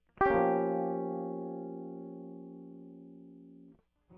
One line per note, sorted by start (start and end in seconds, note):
0.21 3.76 G4
0.26 3.74 C#4
0.31 3.77 A#3
0.35 3.82 F3